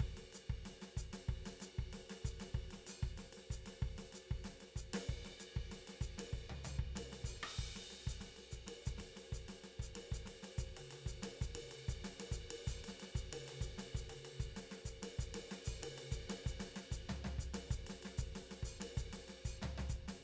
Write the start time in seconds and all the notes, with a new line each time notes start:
0.01 kick
0.18 snare, ride
0.34 snare, hi-hat pedal, ride
0.50 kick
0.66 snare, ride
0.82 snare, ride
0.97 kick, hi-hat pedal
1.14 snare, ride
1.29 kick
1.46 snare, ride
1.61 snare, hi-hat pedal, ride
1.79 kick
1.94 snare, ride
2.11 snare, ride
2.25 kick, hi-hat pedal
2.41 snare, ride
2.55 kick
2.71 snare, ride
2.87 snare, hi-hat pedal, ride
3.03 kick
3.18 snare, ride
3.34 ride
3.38 snare
3.51 kick, hi-hat pedal
3.67 snare, ride
3.83 kick
3.99 snare, ride
4.13 snare, hi-hat pedal, ride
4.32 kick
4.45 snare, ride
4.61 snare, ride
4.77 kick, hi-hat pedal
4.94 snare, ride
5.10 kick
5.26 snare, ride
5.40 snare, hi-hat pedal, ride
5.57 kick
5.72 snare, ride
5.88 snare, ride
6.02 kick, hi-hat pedal
6.19 snare, ride
6.34 kick
6.50 floor tom, high tom
6.65 floor tom, hi-hat pedal, high tom
6.79 kick
6.96 snare, ride
7.13 snare, ride
7.25 kick, hi-hat pedal
7.44 cross-stick, ride
7.59 kick
7.76 snare, ride
7.91 snare, ride
8.08 kick, hi-hat pedal
8.21 snare, ride
8.37 snare, ride
8.52 kick, hi-hat pedal
8.67 snare, ride
8.86 kick, hi-hat pedal
8.99 snare, ride
9.17 snare, ride
9.33 kick, hi-hat pedal
9.49 snare, ride
9.64 snare, ride
9.80 kick, hi-hat pedal
9.96 snare, ride
10.12 kick, hi-hat pedal
10.26 snare, ride
10.44 snare, ride
10.59 kick, hi-hat pedal
10.77 high tom, ride
10.92 high tom, ride
11.07 kick, hi-hat pedal
11.23 snare, ride
11.42 kick, hi-hat pedal
11.56 high tom, ride
11.72 high tom, ride
11.89 kick, hi-hat pedal
12.05 snare, ride
12.20 snare, ride
12.32 kick, hi-hat pedal
12.51 ride
12.68 kick, hi-hat pedal
12.85 snare, ride
13.01 snare, ride
13.16 kick, hi-hat pedal
13.33 high tom, ride
13.49 high tom, ride
13.62 kick, hi-hat pedal
13.79 snare, ride
13.95 kick, hi-hat pedal
14.10 high tom, ride
14.26 high tom, ride
14.41 kick, hi-hat pedal
14.57 snare, ride
14.72 snare, ride
14.86 kick, hi-hat pedal
15.03 snare, ride
15.19 kick, hi-hat pedal
15.35 snare, ride
15.52 snare, ride
15.66 kick, hi-hat pedal
15.83 high tom, ride
15.99 high tom, ride
16.12 kick, hi-hat pedal
16.30 snare, ride
16.47 kick, hi-hat pedal
16.60 snare, ride
16.77 snare, ride
16.92 kick, hi-hat pedal
17.10 snare, floor tom
17.25 snare, floor tom
17.39 kick, hi-hat pedal
17.54 snare, ride
17.71 kick, hi-hat pedal
17.87 snare, ride
18.04 snare, ride
18.18 kick, hi-hat pedal
18.36 snare, ride
18.52 snare, ride
18.63 kick, hi-hat pedal
18.81 snare, ride
18.98 kick, hi-hat pedal
19.14 snare, ride
19.29 snare, ride
19.46 kick, hi-hat pedal
19.62 snare, floor tom
19.79 snare, floor tom
19.90 kick, hi-hat pedal
20.09 snare, ride